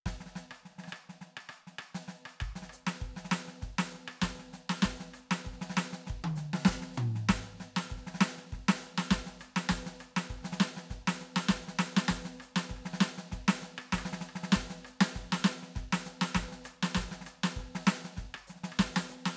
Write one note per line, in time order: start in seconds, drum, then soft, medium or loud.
0.06 kick soft
0.06 snare medium
0.14 snare soft
0.20 snare soft
0.26 snare soft
0.35 snare soft
0.35 hi-hat pedal soft
0.51 cross-stick medium
0.65 snare soft
0.71 snare soft
0.76 snare soft
0.78 snare soft
0.84 cross-stick soft
0.84 snare soft
0.92 cross-stick medium
1.09 snare soft
1.21 snare soft
1.37 cross-stick medium
1.49 cross-stick medium
1.67 snare soft
1.79 cross-stick medium
1.94 snare medium
2.08 snare soft
2.08 hi-hat pedal soft
2.25 cross-stick medium
2.40 kick soft
2.40 cross-stick medium
2.47 kick soft
2.55 snare soft
2.62 snare soft
2.69 cross-stick medium
2.69 hi-hat pedal medium
2.87 snare medium
3.01 kick soft
3.01 snare soft
3.16 snare soft
3.24 snare soft
3.31 snare loud
3.31 hi-hat pedal medium
3.48 snare soft
3.61 kick soft
3.61 snare soft
3.78 snare loud
3.89 hi-hat pedal medium
3.94 snare soft
4.08 cross-stick medium
4.22 kick soft
4.22 snare loud
4.39 snare soft
4.53 snare soft
4.53 hi-hat pedal medium
4.69 snare medium
4.82 kick soft
4.82 snare loud
5.00 snare soft
5.14 cross-stick medium
5.14 hi-hat pedal medium
5.31 snare loud
5.44 kick soft
5.44 snare soft
5.53 snare soft
5.61 snare soft
5.61 snare medium
5.70 snare medium
5.77 snare loud
5.77 hi-hat pedal medium
5.93 snare medium
6.07 kick soft
6.07 snare soft
6.24 high tom loud
6.36 snare soft
6.36 hi-hat pedal medium
6.53 snare medium
6.65 kick soft
6.65 snare loud
6.82 snare soft
6.94 hi-hat pedal medium
6.94 mid tom loud
7.15 snare soft
7.29 kick soft
7.29 snare loud
7.35 kick soft
7.44 snare soft
7.60 snare soft
7.60 hi-hat pedal medium
7.76 snare medium
7.90 kick soft
7.90 snare soft
7.97 snare soft
8.02 snare soft
8.07 snare medium
8.14 snare soft
8.21 snare loud
8.21 hi-hat pedal medium
8.38 snare soft
8.52 kick soft
8.52 snare soft
8.68 snare loud
8.79 snare soft
8.79 hi-hat pedal medium
8.98 snare loud
9.11 kick soft
9.11 snare loud
9.26 snare soft
9.40 cross-stick medium
9.40 hi-hat pedal medium
9.56 snare loud
9.69 kick soft
9.69 snare loud
9.86 snare medium
9.99 cross-stick medium
9.99 hi-hat pedal medium
10.16 snare loud
10.30 kick soft
10.30 snare soft
10.38 cross-stick soft
10.42 snare soft
10.44 snare medium
10.52 snare medium
10.60 snare loud
10.60 hi-hat pedal medium
10.77 snare medium
10.90 kick soft
10.90 snare soft
11.07 snare loud
11.19 snare soft
11.19 hi-hat pedal medium
11.36 snare loud
11.48 kick soft
11.48 snare loud
11.68 snare soft
11.79 snare loud
11.79 hi-hat pedal medium
11.96 snare loud
12.08 kick soft
12.08 snare loud
12.25 snare soft
12.40 cross-stick medium
12.40 hi-hat pedal medium
12.56 snare loud
12.69 kick soft
12.69 snare soft
12.76 cross-stick soft
12.82 snare soft
12.84 snare soft
12.84 snare medium
12.93 snare medium
13.00 snare loud
13.00 hi-hat pedal medium
13.18 snare soft
13.31 kick soft
13.31 snare soft
13.48 snare loud
13.58 snare soft
13.58 hi-hat pedal medium
13.78 cross-stick medium
13.92 kick soft
13.92 snare loud
13.98 cross-stick medium
14.05 snare medium
14.13 snare medium
14.21 snare medium
14.21 hi-hat pedal medium
14.29 cross-stick soft
14.35 snare medium
14.43 snare medium
14.52 kick soft
14.52 snare loud
14.70 snare soft
14.85 cross-stick medium
14.85 hi-hat pedal medium
15.01 snare loud
15.15 kick soft
15.15 snare soft
15.32 snare loud
15.44 snare loud
15.44 hi-hat pedal medium
15.63 snare soft
15.75 kick soft
15.75 snare soft
15.92 snare loud
16.05 snare soft
16.05 hi-hat pedal medium
16.21 snare loud
16.35 kick soft
16.35 snare loud
16.52 snare soft
16.64 cross-stick medium
16.64 hi-hat pedal medium
16.83 snare loud
16.95 kick soft
16.95 snare loud
17.00 snare soft
17.11 snare medium
17.21 snare soft
17.25 cross-stick medium
17.25 hi-hat pedal medium
17.43 snare loud
17.56 kick soft
17.56 snare soft
17.75 snare medium
17.86 snare loud
17.86 hi-hat pedal medium
18.04 snare soft
18.17 kick soft
18.17 snare soft
18.34 cross-stick medium
18.47 snare soft
18.47 hi-hat pedal medium
18.56 snare soft
18.60 snare soft
18.64 snare medium
18.72 cross-stick medium
18.79 kick soft
18.79 snare loud
18.96 snare loud
19.08 snare soft
19.08 hi-hat pedal medium
19.26 snare medium